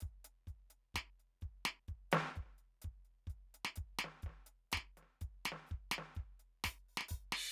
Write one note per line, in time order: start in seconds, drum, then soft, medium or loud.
0.00 open hi-hat medium
0.00 kick soft
0.00 hi-hat pedal soft
0.24 closed hi-hat medium
0.47 kick soft
0.47 closed hi-hat soft
0.70 closed hi-hat soft
0.94 closed hi-hat medium
0.94 kick soft
0.94 snare medium
1.19 closed hi-hat soft
1.41 closed hi-hat soft
1.41 kick soft
1.65 open hi-hat medium
1.65 snare medium
1.88 closed hi-hat soft
1.88 kick soft
2.11 closed hi-hat medium
2.11 snare loud
2.35 closed hi-hat soft
2.35 kick soft
2.35 snare soft
2.42 snare soft
2.46 snare soft
2.58 closed hi-hat soft
2.82 closed hi-hat medium
2.82 kick soft
3.05 closed hi-hat soft
3.27 closed hi-hat soft
3.27 kick soft
3.54 closed hi-hat soft
3.65 snare medium
3.76 closed hi-hat medium
3.76 kick soft
3.98 closed hi-hat medium
3.98 snare medium
4.04 snare soft
4.22 closed hi-hat soft
4.22 kick soft
4.22 snare soft
4.29 snare soft
4.46 closed hi-hat soft
4.72 closed hi-hat medium
4.72 kick soft
4.72 snare loud
4.77 snare soft
4.97 closed hi-hat soft
4.97 snare soft
5.02 snare soft
5.21 closed hi-hat soft
5.21 kick soft
5.45 closed hi-hat medium
5.45 snare medium
5.52 snare soft
5.66 closed hi-hat soft
5.66 hi-hat pedal soft
5.71 kick soft
5.91 closed hi-hat medium
5.91 snare medium
5.98 snare soft
6.15 closed hi-hat soft
6.15 kick soft
6.19 snare soft
6.39 closed hi-hat soft
6.64 open hi-hat medium
6.64 kick soft
6.64 snare medium
6.64 hi-hat pedal soft
6.88 open hi-hat soft
6.97 snare medium
7.01 snare soft
7.08 open hi-hat medium
7.08 kick soft
7.08 hi-hat pedal soft
7.32 snare medium
7.32 crash medium